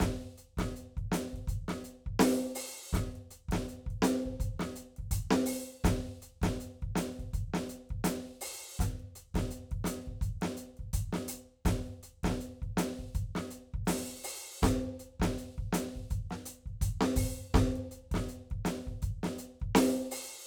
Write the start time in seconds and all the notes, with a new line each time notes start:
0.00 closed hi-hat, kick, snare
0.21 closed hi-hat
0.37 closed hi-hat
0.57 kick, snare, closed hi-hat
0.76 closed hi-hat
0.97 kick, closed hi-hat
1.12 closed hi-hat, snare
1.33 kick, closed hi-hat
1.47 closed hi-hat, kick
1.68 snare, closed hi-hat
1.84 closed hi-hat
2.06 kick
2.19 open hi-hat, snare
2.55 open hi-hat
2.93 open hi-hat, kick, snare, hi-hat pedal
3.15 closed hi-hat
3.30 closed hi-hat
3.48 kick, snare, closed hi-hat
3.68 closed hi-hat
3.86 kick, closed hi-hat
4.02 closed hi-hat, snare
4.25 kick
4.40 closed hi-hat, kick
4.59 snare, closed hi-hat
4.76 closed hi-hat
4.96 kick, closed hi-hat
5.11 closed hi-hat, kick
5.30 snare
5.46 open hi-hat
5.84 closed hi-hat, kick, snare, hi-hat pedal
6.06 closed hi-hat
6.22 closed hi-hat
6.41 kick, snare, closed hi-hat
6.60 closed hi-hat
6.82 kick, closed hi-hat
6.95 closed hi-hat, snare
7.19 kick, closed hi-hat
7.33 closed hi-hat, kick
7.54 snare, closed hi-hat
7.69 closed hi-hat
7.89 kick, closed hi-hat
8.04 open hi-hat, snare
8.41 open hi-hat
8.46 kick
8.62 open hi-hat
8.78 closed hi-hat, kick, snare, hi-hat pedal
8.99 closed hi-hat
9.15 closed hi-hat
9.34 kick, snare, closed hi-hat
9.51 closed hi-hat
9.71 kick, closed hi-hat
9.84 closed hi-hat, snare
10.06 kick, closed hi-hat
10.21 closed hi-hat, kick
10.41 snare, closed hi-hat
10.57 closed hi-hat
10.77 kick, closed hi-hat
10.93 closed hi-hat, kick
11.12 snare
11.28 open hi-hat
11.32 kick
11.65 open hi-hat, kick, snare, hi-hat pedal
11.86 closed hi-hat
12.03 closed hi-hat
12.23 kick, snare, closed hi-hat
12.29 snare
12.40 closed hi-hat
12.62 kick, closed hi-hat
12.77 closed hi-hat, snare
12.98 kick, closed hi-hat
13.14 closed hi-hat, kick
13.35 snare, closed hi-hat
13.50 closed hi-hat
13.71 kick, closed hi-hat
13.85 open hi-hat, snare, hi-hat pedal
14.24 open hi-hat
14.62 open hi-hat, kick, snare, hi-hat pedal
14.84 closed hi-hat
14.99 closed hi-hat
15.20 kick, snare, closed hi-hat
15.38 closed hi-hat
15.58 kick, closed hi-hat
15.73 closed hi-hat, snare
15.95 kick, closed hi-hat
16.10 closed hi-hat, kick
16.30 snare, closed hi-hat
16.45 closed hi-hat
16.66 kick, closed hi-hat
16.81 closed hi-hat, kick
17.01 snare
17.16 open hi-hat, kick
17.54 open hi-hat, kick, snare, hi-hat pedal
17.75 closed hi-hat
17.91 closed hi-hat
18.11 kick, snare, closed hi-hat
18.29 closed hi-hat
18.50 kick, closed hi-hat
18.65 closed hi-hat, snare
18.87 kick, closed hi-hat
19.02 closed hi-hat, kick
19.23 snare, closed hi-hat
19.38 closed hi-hat
19.60 kick, closed hi-hat
19.75 open hi-hat, snare
20.11 open hi-hat